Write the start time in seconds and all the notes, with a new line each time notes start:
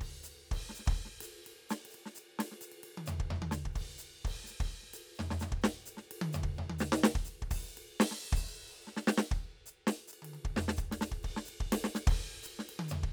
0.01 kick, crash, ride
0.23 hi-hat pedal
0.28 ride
0.51 kick, crash
0.69 snare
0.75 hi-hat pedal
0.79 snare
0.86 kick, crash
0.96 hi-hat pedal
1.05 snare
1.21 hi-hat pedal, ride
1.44 hi-hat pedal, ride
1.70 snare, hi-hat pedal, ride
1.85 ride
1.90 hi-hat pedal
1.95 ride
2.06 snare
2.15 hi-hat pedal, ride
2.39 snare, ride
2.52 snare
2.61 hi-hat pedal, ride
2.72 ride
2.84 ride
2.98 high tom
3.06 floor tom, hi-hat pedal
3.20 kick
3.31 floor tom
3.42 high tom
3.51 snare, hi-hat pedal
3.65 kick
3.73 kick, hi-hat pedal
3.77 crash, ride
3.98 hi-hat pedal
4.03 ride bell
4.25 kick, crash
4.44 snare, hi-hat pedal
4.50 snare
4.60 kick, crash
4.82 snare
4.93 hi-hat pedal, ride
5.15 snare, hi-hat pedal
5.19 floor tom
5.31 snare, floor tom
5.40 snare, floor tom, hi-hat pedal
5.52 kick
5.62 snare, hi-hat pedal, ride
5.86 hi-hat pedal, ride
5.97 snare
6.11 ride
6.22 high tom
6.33 floor tom, hi-hat pedal
6.43 kick
6.54 hi-hat pedal
6.59 floor tom
6.70 high tom
6.79 snare, hi-hat pedal
6.92 snare
7.04 snare
7.15 kick
7.25 hi-hat pedal, ride
7.42 kick
7.51 open hi-hat, kick, ride
7.77 ride
8.00 snare, crash
8.11 snare
8.25 ride
8.33 open hi-hat, kick
8.49 ride
8.71 ride
8.87 snare
8.97 snare
9.08 snare
9.12 hi-hat pedal
9.18 snare
9.31 kick
9.66 hi-hat pedal
9.87 snare, ride
10.08 hi-hat pedal
10.13 ride bell
10.22 high tom, ride
10.34 high tom, ride
10.45 kick
10.57 snare, floor tom
10.68 snare
10.77 kick, hi-hat pedal
10.92 snare, ride
11.01 snare
11.12 kick
11.21 kick, hi-hat pedal, ride
11.37 snare
11.46 hi-hat pedal, ride
11.60 kick
11.72 snare, ride
11.84 snare
11.95 snare, hi-hat pedal
12.07 kick, crash
12.43 hi-hat pedal, ride
12.59 snare
12.64 hi-hat pedal
12.69 ride
12.79 high tom
12.88 floor tom, hi-hat pedal
13.04 kick